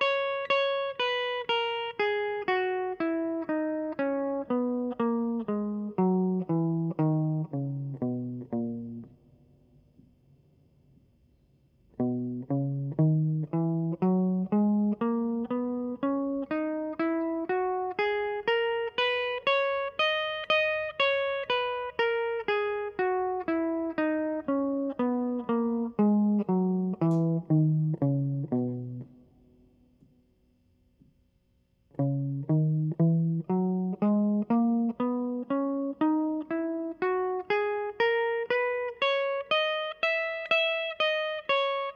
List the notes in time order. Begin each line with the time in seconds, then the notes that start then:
0.01 C#5
0.50 C#5
1.00 B4
1.49 A#4
2.00 G#4
2.48 F#4
3.00 E4
3.49 D#4
3.99 C#4
4.51 B3
5.00 A#3
5.49 G#3
5.99 F#3
6.50 E3
7.00 D#3
7.55 C#3
8.03 B2
8.54 A#2
12.01 B2
12.52 C#3
13.00 D#3
13.54 E3
14.03 F#3
14.53 G#3
15.02 A#3
15.51 B3
16.03 C#4
16.51 D#4
17.00 E4
17.50 F#4
17.99 G#4
18.48 A#4
18.98 B4
19.47 C#5
19.99 D#5
20.50 D#5
21.00 C#5
21.50 B4
21.99 A#4
22.48 G#4
22.99 F#4
23.48 E4
23.98 D#4
24.49 C#4
25.00 B3
25.49 A#3
25.99 G#3
26.49 F#3
27.02 E3
27.51 D#3
28.03 C#3
28.54 B2
32.00 C#3
32.50 D#3
33.00 E3
33.50 F#3
34.02 G#3
34.51 A#3
35.00 B3
35.51 C#4
36.01 D#4
36.51 E4
37.02 F#4
37.51 G#4
38.00 A#4
38.51 B4
39.02 C#5
39.51 D#5
40.03 E5
40.51 E5
41.00 D#5
41.50 C#5